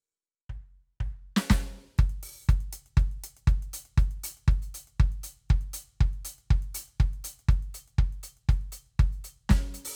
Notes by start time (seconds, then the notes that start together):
0.49 kick
1.00 kick
1.36 snare
1.50 kick, snare
1.98 kick, closed hi-hat
2.09 closed hi-hat
2.23 open hi-hat
2.43 hi-hat pedal
2.49 kick, closed hi-hat
2.60 closed hi-hat
2.73 closed hi-hat
2.86 closed hi-hat
2.97 kick, closed hi-hat
3.11 closed hi-hat
3.24 closed hi-hat
3.37 closed hi-hat
3.47 kick, closed hi-hat
3.62 closed hi-hat
3.73 closed hi-hat
3.85 closed hi-hat
3.98 closed hi-hat, kick
4.11 closed hi-hat
4.17 kick
4.24 closed hi-hat
4.37 closed hi-hat
4.48 kick, closed hi-hat
4.62 closed hi-hat
4.74 closed hi-hat
4.87 closed hi-hat
5.00 kick, closed hi-hat
5.12 closed hi-hat
5.23 closed hi-hat
5.38 closed hi-hat
5.49 kick, closed hi-hat
5.61 closed hi-hat
5.73 closed hi-hat
5.87 closed hi-hat
6.01 kick, closed hi-hat
6.13 closed hi-hat
6.25 closed hi-hat
6.38 closed hi-hat
6.50 kick, closed hi-hat
6.62 closed hi-hat
6.75 closed hi-hat
6.88 closed hi-hat
7.00 kick, closed hi-hat
7.13 closed hi-hat
7.24 closed hi-hat
7.39 closed hi-hat
7.49 kick, closed hi-hat
7.62 closed hi-hat
7.74 closed hi-hat
7.88 closed hi-hat
7.98 kick, closed hi-hat
8.12 closed hi-hat
8.23 closed hi-hat
8.37 closed hi-hat
8.49 closed hi-hat, kick
8.61 closed hi-hat
8.72 closed hi-hat
8.86 closed hi-hat
8.99 kick, closed hi-hat
9.12 closed hi-hat
9.24 closed hi-hat
9.49 kick, snare
9.71 closed hi-hat, kick
9.85 open hi-hat